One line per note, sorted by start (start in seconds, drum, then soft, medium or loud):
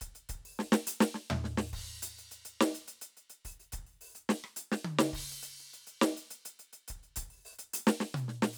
0.01 closed hi-hat medium
0.01 kick soft
0.15 closed hi-hat soft
0.29 closed hi-hat medium
0.29 kick soft
0.45 open hi-hat medium
0.59 snare medium
0.72 snare loud
0.87 closed hi-hat loud
1.00 snare loud
1.14 snare medium
1.30 floor tom loud
1.44 snare medium
1.57 snare medium
1.67 hi-hat pedal soft
1.73 kick soft
1.73 crash medium
1.82 kick soft
2.02 closed hi-hat loud
2.18 closed hi-hat soft
2.31 closed hi-hat medium
2.45 closed hi-hat medium
2.61 snare loud
2.74 closed hi-hat medium
2.88 closed hi-hat medium
3.01 closed hi-hat medium
3.17 closed hi-hat soft
3.30 closed hi-hat medium
3.45 open hi-hat medium
3.45 kick soft
3.59 open hi-hat soft
3.72 closed hi-hat medium
3.72 kick soft
3.79 kick soft
3.82 kick soft
3.87 open hi-hat soft
4.01 open hi-hat medium
4.15 open hi-hat medium
4.29 snare loud
4.44 cross-stick medium
4.56 closed hi-hat medium
4.72 snare medium
4.85 high tom loud
4.99 snare loud
5.13 kick soft
5.13 crash medium
5.19 kick soft
5.21 kick soft
5.32 closed hi-hat soft
5.43 closed hi-hat medium
5.60 closed hi-hat soft
5.73 closed hi-hat soft
5.87 closed hi-hat medium
6.01 snare loud
6.17 closed hi-hat medium
6.30 closed hi-hat medium
6.45 closed hi-hat medium
6.59 closed hi-hat soft
6.73 closed hi-hat medium
6.88 closed hi-hat medium
6.88 kick soft
7.03 closed hi-hat soft
7.16 closed hi-hat loud
7.16 kick soft
7.23 kick soft
7.30 open hi-hat soft
7.45 open hi-hat medium
7.52 hi-hat pedal soft
7.59 closed hi-hat medium
7.73 closed hi-hat loud
7.87 snare loud
8.00 snare medium
8.14 hi-hat pedal medium
8.14 mid tom loud
8.28 snare soft
8.42 snare loud
8.53 hi-hat pedal medium